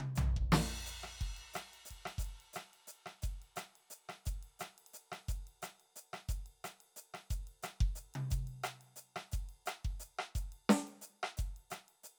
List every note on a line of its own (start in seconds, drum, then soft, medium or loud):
0.01 high tom loud
0.16 floor tom loud
0.16 hi-hat pedal medium
0.37 kick medium
0.53 snare loud
0.53 crash medium
0.87 hi-hat pedal medium
0.87 ride soft
1.04 cross-stick medium
1.04 ride soft
1.22 kick medium
1.22 ride soft
1.37 ride soft
1.54 cross-stick medium
1.54 hi-hat pedal medium
1.54 ride medium
1.74 ride soft
1.86 hi-hat pedal medium
1.91 kick soft
1.91 ride soft
2.06 cross-stick medium
2.06 ride soft
2.19 kick medium
2.19 hi-hat pedal medium
2.25 ride soft
2.41 ride soft
2.54 cross-stick medium
2.54 hi-hat pedal medium
2.54 ride soft
2.74 ride soft
2.88 hi-hat pedal medium
2.92 ride soft
3.07 cross-stick medium
3.07 ride soft
3.23 kick medium
3.23 hi-hat pedal medium
3.23 ride soft
3.43 ride soft
3.57 cross-stick medium
3.57 hi-hat pedal medium
3.57 ride soft
3.76 ride soft
3.91 hi-hat pedal medium
3.91 ride soft
4.10 cross-stick medium
4.10 ride soft
4.26 kick medium
4.26 hi-hat pedal medium
4.26 ride soft
4.44 ride soft
4.60 cross-stick medium
4.60 hi-hat pedal medium
4.60 ride soft
4.79 ride soft
4.87 ride soft
4.94 hi-hat pedal medium
4.94 ride soft
5.13 cross-stick medium
5.13 ride soft
5.29 kick medium
5.29 hi-hat pedal medium
5.29 ride soft
5.48 ride soft
5.63 cross-stick medium
5.63 hi-hat pedal medium
5.63 ride soft
5.81 ride soft
5.97 hi-hat pedal medium
5.97 ride soft
6.14 cross-stick medium
6.14 ride soft
6.29 kick medium
6.29 hi-hat pedal medium
6.29 ride soft
6.47 ride soft
6.65 cross-stick medium
6.65 hi-hat pedal medium
6.65 ride soft
6.81 ride soft
6.97 hi-hat pedal medium
6.97 ride soft
7.15 cross-stick medium
7.15 ride soft
7.31 kick medium
7.31 hi-hat pedal medium
7.31 ride soft
7.48 ride soft
7.63 cross-stick medium
7.63 hi-hat pedal medium
7.63 ride soft
7.81 kick medium
7.81 ride soft
7.96 hi-hat pedal medium
7.96 ride soft
8.15 high tom loud
8.15 ride soft
8.31 kick medium
8.31 hi-hat pedal medium
8.31 ride soft
8.48 ride soft
8.64 cross-stick medium
8.64 hi-hat pedal medium
8.64 ride soft
8.82 ride soft
8.97 hi-hat pedal medium
8.97 ride soft
9.17 cross-stick medium
9.17 ride soft
9.32 kick medium
9.32 hi-hat pedal medium
9.32 ride soft
9.50 ride soft
9.67 cross-stick medium
9.67 hi-hat pedal medium
9.67 ride soft
9.85 kick medium
9.85 ride soft
10.01 hi-hat pedal medium
10.01 ride soft
10.19 cross-stick medium
10.36 kick medium
10.36 hi-hat pedal medium
10.36 ride soft
10.53 ride soft
10.70 snare medium
10.70 hi-hat pedal medium
10.88 ride soft
11.02 hi-hat pedal medium
11.07 ride soft
11.24 cross-stick medium
11.38 kick medium
11.38 hi-hat pedal medium
11.38 ride soft
11.57 ride soft
11.71 cross-stick medium
11.71 hi-hat pedal medium
11.71 ride soft
11.89 ride soft
12.04 hi-hat pedal medium
12.04 ride soft